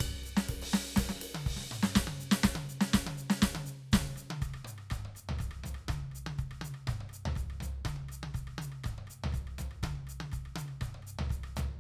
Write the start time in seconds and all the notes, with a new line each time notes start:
0.01 kick, hi-hat pedal, ride bell
0.24 hi-hat pedal, ride
0.37 snare
0.49 kick, hi-hat pedal, ride
0.62 ride
0.74 snare, hi-hat pedal
0.86 ride
0.97 kick, snare, hi-hat pedal, ride
1.10 snare
1.22 hi-hat pedal, ride
1.35 high tom
1.47 kick, hi-hat pedal, ride
1.57 snare
1.61 snare
1.72 hi-hat pedal, mid tom
1.84 snare
1.96 kick, snare, hi-hat pedal
2.08 high tom
2.21 kick, hi-hat pedal
2.32 snare
2.44 kick, snare, hi-hat pedal
2.56 high tom
2.70 hi-hat pedal
2.82 snare
2.93 kick, snare, hi-hat pedal
3.07 high tom
3.18 hi-hat pedal
3.31 snare
3.42 kick, snare, hi-hat pedal
3.56 high tom
3.67 hi-hat pedal
3.93 kick, snare, hi-hat pedal, high tom
4.17 cross-stick, hi-hat pedal
4.31 high tom
4.42 kick, cross-stick, hi-hat pedal
4.55 cross-stick
4.65 hi-hat pedal, mid tom
4.79 cross-stick
4.91 kick, cross-stick, hi-hat pedal, mid tom
5.06 mid tom
5.16 cross-stick, hi-hat pedal
5.30 floor tom
5.40 kick, cross-stick, hi-hat pedal
5.52 cross-stick
5.64 floor tom, hi-hat pedal
5.75 cross-stick
5.89 kick, cross-stick, hi-hat pedal, high tom
6.01 high tom
6.04 high tom
6.12 cross-stick, hi-hat pedal
6.27 high tom
6.39 kick, cross-stick, hi-hat pedal
6.52 cross-stick
6.62 hi-hat pedal, high tom
6.75 cross-stick
6.88 kick, cross-stick, hi-hat pedal, mid tom
7.01 mid tom
7.10 cross-stick, hi-hat pedal
7.26 floor tom
7.36 kick, cross-stick, hi-hat pedal
7.51 cross-stick
7.61 floor tom, hi-hat pedal
7.86 kick, cross-stick, hi-hat pedal, high tom
7.97 high tom
8.01 high tom
8.09 cross-stick, hi-hat pedal
8.24 high tom
8.35 kick, cross-stick, hi-hat pedal
8.48 cross-stick
8.59 hi-hat pedal, high tom
8.73 cross-stick
8.85 kick, cross-stick, hi-hat pedal, mid tom
8.99 mid tom
9.08 cross-stick, hi-hat pedal
9.24 floor tom
9.33 kick, cross-stick, hi-hat pedal
9.48 cross-stick
9.59 floor tom, hi-hat pedal
9.72 cross-stick
9.83 kick, cross-stick, hi-hat pedal, high tom
9.96 high tom
10.00 high tom
10.08 cross-stick, hi-hat pedal
10.21 high tom
10.32 kick, cross-stick, hi-hat pedal
10.46 cross-stick
10.57 hi-hat pedal, high tom
10.69 cross-stick
10.82 kick, cross-stick, hi-hat pedal, mid tom
10.95 mid tom
11.03 cross-stick
11.08 hi-hat pedal
11.19 floor tom
11.30 kick, cross-stick, hi-hat pedal
11.44 cross-stick
11.57 floor tom, hi-hat pedal